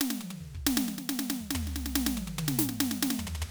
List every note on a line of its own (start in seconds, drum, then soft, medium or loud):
0.00 snare loud
0.10 snare medium
0.21 high tom medium
0.30 high tom medium
0.40 kick soft
0.54 kick soft
0.66 snare loud
0.77 snare loud
0.88 snare medium
1.09 snare medium
1.30 snare medium
1.40 kick soft
1.50 snare medium
1.55 floor tom loud
1.67 snare soft
1.76 snare medium
1.95 snare loud
2.06 snare loud
2.17 high tom medium
2.27 high tom medium
2.38 mid tom loud
2.48 snare loud
2.59 snare medium
2.69 snare medium
2.80 snare loud
2.91 snare medium
3.02 snare loud
3.10 snare medium
3.19 floor tom medium
3.27 floor tom medium
3.35 floor tom medium
3.42 floor tom loud